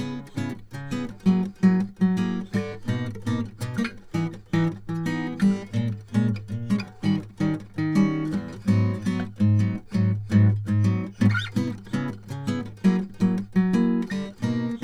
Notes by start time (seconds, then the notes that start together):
0.00 C#3 B3 E4 G#4
0.38 C#3 B3 E4
0.75 C#3
0.92 B3 E4 G#4
1.26 F#3 A#3 E4 G#4
1.64 F#3 A#3 E4 G#4
2.02 F#3
2.18 A#3 E4 G#4
2.54 D3
2.89 B2 A#3 D#4 F#4
3.27 B2 A#3 D#4
3.62 B2
3.79 A#3 D#4 F#4
4.15 E3 B3 D#4 G#4
4.54 E3 B3 D#4 G#4
4.89 E3
5.07 B3 D#4 G#4
5.43 G3
5.74 A#2 G#3 C#4
6.15 A#2 G#3 C#4
6.50 A#2
6.71 G#3 C#4
7.04 D#3 G3 C#4 F#4
7.41 D#3 G3 C#4 F#4
7.79 D#3
7.96 G3 C#4 F#4
8.33 E2
8.69 G#2 F#3 B3 D#4
9.06 G#2 F#3 B3 D#4
9.41 G#2
9.60 F#3 B3 D#4
9.93 G#2 F#3 B3 D#4
10.31 G#2 F#3 B3
10.47 D4
10.68 G#2
10.85 F#3 B3 D#4
11.22 G#2 F#3 B3
11.57 C3 B3 E4 G#4
11.87 G#4
11.94 C#3 B3 E4
12.31 C#3
12.48 B3 E4 G#4
12.85 F#3 A#3 E4 G#4
13.21 F#3 A#3 E4 G#4
13.56 F#3
13.74 A#3 E4 G#4
14.12 D3 G3
14.43 B2 A#3 D#4 F#4